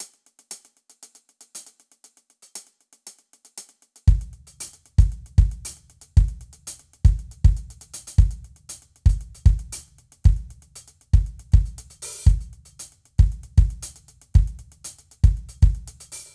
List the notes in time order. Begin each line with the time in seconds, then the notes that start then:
0.01 closed hi-hat
0.14 closed hi-hat
0.27 closed hi-hat
0.39 closed hi-hat
0.51 closed hi-hat
0.65 closed hi-hat
0.77 closed hi-hat
0.90 closed hi-hat
1.03 closed hi-hat
1.15 closed hi-hat
1.29 closed hi-hat
1.41 closed hi-hat
1.55 closed hi-hat
1.67 closed hi-hat
1.80 closed hi-hat
1.92 closed hi-hat
2.04 closed hi-hat
2.17 closed hi-hat
2.30 closed hi-hat
2.43 closed hi-hat
2.56 closed hi-hat
2.67 closed hi-hat
2.81 closed hi-hat
2.93 closed hi-hat
3.07 closed hi-hat
3.19 closed hi-hat
3.34 closed hi-hat
3.45 closed hi-hat
3.58 closed hi-hat
3.69 closed hi-hat
3.82 closed hi-hat
3.96 closed hi-hat
4.08 kick, closed hi-hat
4.21 closed hi-hat
4.33 closed hi-hat
4.47 closed hi-hat
4.60 closed hi-hat
4.74 closed hi-hat
4.86 closed hi-hat
4.99 kick, closed hi-hat
5.12 closed hi-hat
5.26 closed hi-hat
5.38 kick, closed hi-hat
5.52 closed hi-hat
5.65 closed hi-hat
5.77 closed hi-hat
5.90 closed hi-hat
6.02 closed hi-hat
6.17 kick, closed hi-hat
6.29 closed hi-hat
6.41 closed hi-hat
6.53 closed hi-hat
6.67 closed hi-hat
6.80 closed hi-hat
6.94 closed hi-hat
7.05 kick, closed hi-hat
7.19 closed hi-hat
7.32 closed hi-hat
7.45 kick, closed hi-hat
7.57 closed hi-hat
7.70 closed hi-hat
7.81 closed hi-hat
7.94 closed hi-hat
8.07 closed hi-hat
8.18 kick, closed hi-hat
8.31 closed hi-hat
8.45 closed hi-hat
8.56 closed hi-hat
8.69 closed hi-hat
8.82 closed hi-hat
8.96 closed hi-hat
9.06 closed hi-hat, kick
9.21 closed hi-hat
9.35 closed hi-hat
9.46 kick, closed hi-hat
9.59 closed hi-hat
9.73 closed hi-hat
9.88 closed hi-hat
9.99 closed hi-hat
10.12 closed hi-hat
10.24 kick, closed hi-hat
10.37 closed hi-hat
10.51 closed hi-hat
10.62 closed hi-hat
10.76 closed hi-hat
10.88 closed hi-hat
11.01 closed hi-hat
11.14 kick, closed hi-hat
11.26 closed hi-hat
11.40 closed hi-hat
11.52 kick, closed hi-hat
11.66 closed hi-hat
11.78 closed hi-hat
11.90 closed hi-hat
12.02 open hi-hat
12.18 open hi-hat
12.25 kick, hi-hat pedal
12.29 closed hi-hat
12.41 closed hi-hat
12.53 closed hi-hat
12.65 closed hi-hat
12.79 closed hi-hat
12.92 closed hi-hat
13.06 closed hi-hat
13.19 kick, closed hi-hat
13.32 closed hi-hat
13.43 closed hi-hat
13.58 kick, closed hi-hat
13.70 closed hi-hat
13.83 closed hi-hat
13.96 closed hi-hat
14.08 closed hi-hat
14.22 closed hi-hat
14.34 kick, closed hi-hat
14.48 closed hi-hat
14.59 closed hi-hat
14.72 closed hi-hat
14.85 closed hi-hat
14.99 closed hi-hat
15.12 closed hi-hat
15.24 kick, closed hi-hat
15.37 closed hi-hat
15.49 closed hi-hat
15.62 kick, closed hi-hat
15.75 closed hi-hat
15.88 closed hi-hat
16.00 closed hi-hat
16.12 open hi-hat
16.26 open hi-hat